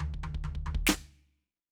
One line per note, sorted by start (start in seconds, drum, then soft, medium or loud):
0.00 floor tom medium
0.00 high tom medium
0.14 kick soft
0.23 floor tom medium
0.23 high tom medium
0.34 kick soft
0.44 floor tom medium
0.44 high tom medium
0.55 kick soft
0.66 floor tom medium
0.66 high tom medium
0.75 kick medium
0.87 snare loud
0.89 snare loud